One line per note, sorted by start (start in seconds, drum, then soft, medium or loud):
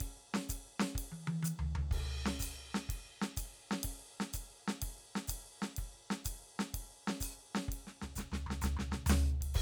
0.01 kick soft
0.01 ride medium
0.34 snare medium
0.49 kick soft
0.49 hi-hat pedal loud
0.49 ride medium
0.80 snare medium
0.96 kick soft
0.96 ride loud
1.12 high tom medium
1.28 closed hi-hat soft
1.28 high tom loud
1.43 hi-hat pedal loud
1.43 high tom medium
1.59 floor tom medium
1.68 kick soft
1.76 floor tom loud
1.92 kick medium
1.92 ride loud
2.06 kick soft
2.26 snare medium
2.40 kick soft
2.40 hi-hat pedal loud
2.40 ride loud
2.75 snare medium
2.90 kick soft
2.90 ride medium
3.22 snare medium
3.37 kick soft
3.37 hi-hat pedal medium
3.37 ride loud
3.71 snare medium
3.84 kick soft
3.84 ride loud
4.21 snare medium
4.34 kick soft
4.34 hi-hat pedal medium
4.34 ride medium
4.68 snare medium
4.82 kick soft
4.82 ride loud
5.16 snare medium
5.28 kick soft
5.28 hi-hat pedal loud
5.28 ride loud
5.62 snare medium
5.77 kick soft
5.77 ride medium
6.11 snare medium
6.25 kick soft
6.25 hi-hat pedal loud
6.25 ride loud
6.59 snare medium
6.74 kick soft
6.74 ride loud
7.08 snare medium
7.21 kick soft
7.21 hi-hat pedal loud
7.21 ride loud
7.55 snare medium
7.69 kick soft
7.69 ride medium
7.87 snare soft
8.02 snare soft
8.02 floor tom medium
8.16 kick soft
8.16 snare soft
8.16 floor tom medium
8.16 hi-hat pedal medium
8.32 snare medium
8.32 floor tom medium
8.37 hi-hat pedal soft
8.47 floor tom medium
8.51 snare medium
8.62 kick soft
8.62 snare medium
8.62 floor tom medium
8.62 hi-hat pedal loud
8.77 snare medium
8.77 floor tom medium
8.92 snare medium
8.92 floor tom medium
9.07 snare loud
9.07 floor tom loud
9.07 hi-hat pedal loud
9.29 hi-hat pedal soft
9.41 kick soft
9.41 ride medium
9.55 kick medium
9.55 crash loud
9.55 ride medium